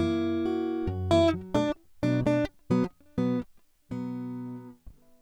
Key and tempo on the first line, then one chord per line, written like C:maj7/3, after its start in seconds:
B minor, 131 BPM
0.00 F#:7(*5)
1.56 B:min